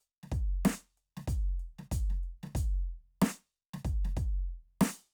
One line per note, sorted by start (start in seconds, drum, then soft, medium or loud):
0.01 closed hi-hat soft
0.24 snare soft
0.32 closed hi-hat soft
0.32 kick medium
0.66 closed hi-hat medium
0.66 snare loud
0.98 closed hi-hat soft
1.18 snare soft
1.28 closed hi-hat medium
1.28 kick medium
1.50 snare soft
1.60 closed hi-hat soft
1.79 snare soft
1.92 closed hi-hat loud
1.92 kick medium
2.11 snare soft
2.24 closed hi-hat soft
2.44 snare soft
2.47 snare soft
2.56 closed hi-hat loud
2.56 kick medium
3.22 closed hi-hat medium
3.22 snare loud
3.74 snare medium
3.86 closed hi-hat medium
3.86 kick medium
4.05 snare soft
4.18 closed hi-hat soft
4.18 kick medium
4.82 open hi-hat loud
4.82 snare loud